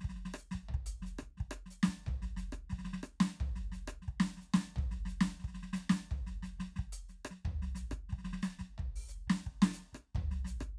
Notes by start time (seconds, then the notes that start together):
0.01 kick, snare
0.09 snare
0.16 snare
0.25 snare
0.34 cross-stick, hi-hat pedal
0.51 kick, snare
0.69 floor tom
0.74 kick
0.86 closed hi-hat
1.02 snare, hi-hat pedal
1.19 kick, cross-stick
1.23 cross-stick
1.37 kick, snare
1.51 cross-stick
1.66 snare
1.71 hi-hat pedal
1.83 snare
1.88 kick
2.07 kick, floor tom
2.22 snare
2.37 snare, hi-hat pedal
2.53 kick, cross-stick
2.70 kick, snare
2.79 snare
2.85 snare
2.93 snare
3.03 cross-stick, hi-hat pedal
3.20 kick, snare
3.40 kick, floor tom
3.56 snare
3.72 snare, hi-hat pedal
3.88 kick, cross-stick
4.02 snare
4.08 kick
4.20 snare
4.37 snare
4.41 hi-hat pedal
4.54 kick, snare
4.60 snare
4.76 kick, floor tom
4.91 snare
5.06 snare, hi-hat pedal
5.21 kick, snare
5.40 snare
5.44 kick, snare
5.55 snare
5.63 snare
5.73 snare, hi-hat pedal
5.90 kick, snare
6.11 kick, floor tom
6.27 snare
6.43 snare, hi-hat pedal
6.59 kick, snare
6.76 kick, snare
6.93 open hi-hat
7.09 snare, hi-hat pedal
7.25 kick, cross-stick
7.31 snare
7.45 kick, floor tom
7.62 snare
7.75 snare, hi-hat pedal
7.91 kick, cross-stick
8.09 kick, snare
8.19 snare
8.25 snare
8.33 snare
8.43 hi-hat pedal
8.59 kick, snare
8.78 kick, floor tom
8.96 open hi-hat
9.09 hi-hat pedal
9.16 snare
9.28 kick, snare
9.47 kick, snare
9.62 snare
9.74 snare, hi-hat pedal
9.93 kick, cross-stick
10.15 kick, floor tom
10.31 snare
10.45 snare, hi-hat pedal
10.61 kick, cross-stick